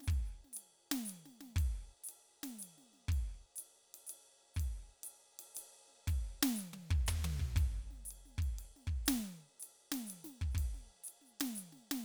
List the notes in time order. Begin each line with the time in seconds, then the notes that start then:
0.01 snare, hi-hat pedal
0.04 kick, snare
0.10 ride
0.26 hi-hat pedal
0.45 snare
0.53 hi-hat pedal, ride
0.92 snare, ride
1.05 hi-hat pedal
1.10 ride
1.26 snare
1.41 snare
1.56 kick, ride
2.04 hi-hat pedal
2.09 ride
2.44 snare, ride
2.59 hi-hat pedal
2.63 ride
2.78 snare
2.93 snare
3.09 kick, ride
3.56 hi-hat pedal, ride
3.94 ride
4.07 hi-hat pedal, ride
4.55 kick, hi-hat pedal
4.60 ride
5.04 hi-hat pedal, ride
5.39 ride
5.55 hi-hat pedal, ride
5.88 snare
6.08 kick, ride
6.43 snare
6.56 hi-hat pedal
6.61 ride
6.74 high tom
6.91 kick
7.07 floor tom, hi-hat pedal
7.25 mid tom
7.40 kick
7.56 kick, ride
7.76 snare
7.91 snare
8.06 hi-hat pedal
8.11 ride
8.26 snare, hi-hat pedal
8.38 kick
8.43 ride
8.59 ride
8.77 snare
8.87 kick
9.06 snare, hi-hat pedal, ride
9.49 snare
9.60 hi-hat pedal, ride
9.92 snare, ride
10.07 hi-hat pedal, ride
10.25 snare
10.42 kick
10.51 kick, hi-hat pedal
10.58 ride
10.74 snare
11.04 hi-hat pedal
11.09 ride
11.22 snare
11.26 hi-hat pedal
11.40 snare, ride
11.56 hi-hat pedal, ride
11.73 snare
11.91 snare